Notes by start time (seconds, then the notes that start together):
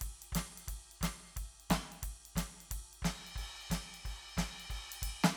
0.01 kick, ride
0.22 ride
0.32 kick, snare, ride
0.58 ride
0.68 kick, ride
0.91 ride
1.01 kick, snare, ride
1.36 kick, ride
1.60 ride
1.70 kick, snare, ride
1.92 ride
2.03 kick, ride
2.25 ride
2.35 kick, snare, ride
2.60 ride
2.71 kick, ride
2.93 ride
3.02 kick, snare, ride
3.27 ride
3.35 kick, ride
3.61 ride
3.70 kick, snare, ride
3.94 ride
4.05 kick, ride
4.28 ride
4.37 kick, snare, ride
4.60 ride
4.70 kick, ride
4.92 ride
5.02 kick, ride
5.24 snare